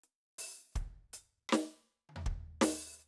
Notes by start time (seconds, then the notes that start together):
0.04 closed hi-hat
0.38 open hi-hat
0.72 kick, hi-hat pedal
0.76 closed hi-hat
1.13 closed hi-hat
1.49 cross-stick, snare
2.09 high tom
2.16 floor tom
2.26 kick
2.61 open hi-hat, snare
2.99 hi-hat pedal